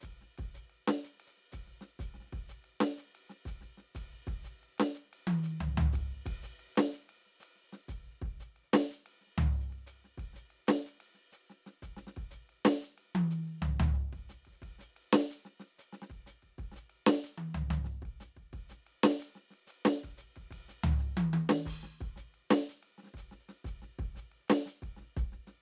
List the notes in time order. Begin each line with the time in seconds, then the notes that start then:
0.01 kick, hi-hat pedal
0.05 ride
0.22 snare
0.38 kick, ride
0.55 hi-hat pedal
0.70 ride
0.88 snare, ride
1.04 hi-hat pedal
1.20 ride
1.27 hi-hat pedal
1.37 snare
1.52 kick, hi-hat pedal, ride
1.67 snare
1.75 hi-hat pedal
1.81 snare
1.85 ride
1.99 kick, hi-hat pedal, ride
2.14 snare
2.20 snare
2.27 snare
2.33 kick, ride
2.49 hi-hat pedal
2.64 ride
2.81 snare, ride
2.98 hi-hat pedal
3.15 ride
3.30 snare
3.46 kick, hi-hat pedal, ride
3.61 snare
3.78 snare, ride
3.95 kick, hi-hat pedal, ride
4.12 snare
4.27 kick, ride
4.43 snare, hi-hat pedal
4.63 ride
4.78 snare, ride
4.94 hi-hat pedal
5.13 ride
5.27 high tom
5.44 hi-hat pedal, ride
5.61 floor tom
5.78 floor tom
5.93 kick, hi-hat pedal, ride
6.26 kick, ride
6.43 snare, hi-hat pedal
6.60 ride
6.66 hi-hat pedal
6.76 snare, ride
6.93 hi-hat pedal
7.09 ride
7.26 snare
7.40 hi-hat pedal, ride
7.56 snare
7.64 hi-hat pedal
7.73 snare, ride
7.89 kick, hi-hat pedal, ride
8.11 snare
8.22 kick, ride
8.40 snare, hi-hat pedal
8.56 ride
8.64 hi-hat pedal
8.73 snare, ride
8.91 hi-hat pedal
9.06 ride
9.21 snare
9.27 snare
9.38 floor tom, hi-hat pedal
9.53 snare
9.61 hi-hat pedal
9.70 snare, ride
9.87 hi-hat pedal, ride
10.05 snare
10.18 kick, ride
10.34 snare, hi-hat pedal
10.39 snare
10.51 ride
10.59 hi-hat pedal
10.68 snare, ride
10.86 hi-hat pedal
11.01 ride
11.15 snare
11.33 hi-hat pedal, ride
11.50 snare, hi-hat pedal
11.67 snare, ride
11.83 kick, hi-hat pedal, ride
11.97 snare
12.07 snare
12.17 kick, ride
12.31 snare, hi-hat pedal
12.49 ride
12.65 snare
12.82 hi-hat pedal
12.98 ride
13.15 high tom
13.31 hi-hat pedal, ride
13.47 snare
13.62 floor tom
13.80 floor tom, hi-hat pedal
13.94 snare
14.13 kick, ride
14.29 snare, hi-hat pedal
14.45 kick, ride
14.53 hi-hat pedal
14.62 kick, ride
14.79 snare, hi-hat pedal
14.97 ride
15.13 snare
15.30 hi-hat pedal, ride
15.45 snare
15.60 snare, ride
15.79 hi-hat pedal, ride
15.93 snare
16.02 snare
16.10 kick, ride
16.27 snare, hi-hat pedal
16.43 kick, ride
16.59 kick, ride
16.72 snare, hi-hat pedal
16.90 ride
17.07 snare
17.24 hi-hat pedal, ride
17.38 high tom
17.55 floor tom
17.71 floor tom, hi-hat pedal
17.85 snare
18.02 kick, ride
18.21 snare, hi-hat pedal
18.37 kick, ride
18.53 kick, ride
18.70 snare, hi-hat pedal
18.87 ride
19.04 snare
19.19 hi-hat pedal, ride
19.36 snare
19.51 snare, ride
19.67 hi-hat pedal, ride
19.85 snare
20.04 kick, ride
20.18 snare, hi-hat pedal
20.36 kick, ride
20.51 kick, ride
20.69 snare, hi-hat pedal
20.77 snare
20.84 floor tom
20.92 hi-hat pedal
21.00 snare
21.17 hi-hat pedal, high tom
21.34 high tom
21.49 snare
21.66 kick, hi-hat pedal, crash
21.83 snare
22.01 kick, ride
22.16 snare, hi-hat pedal
22.34 ride
22.51 snare, ride
22.69 hi-hat pedal
22.83 ride
22.98 snare
23.04 snare
23.07 snare
23.14 kick, hi-hat pedal, ride
23.32 snare
23.40 hi-hat pedal
23.49 snare, ride
23.65 kick, hi-hat pedal, ride
23.82 snare
23.99 kick, ride
24.15 snare, hi-hat pedal
24.32 ride
24.40 hi-hat pedal
24.49 snare, ride
24.66 snare, hi-hat pedal
24.82 kick, ride
24.97 snare
25.01 snare
25.17 kick, hi-hat pedal, ride
25.32 snare
25.47 snare, ride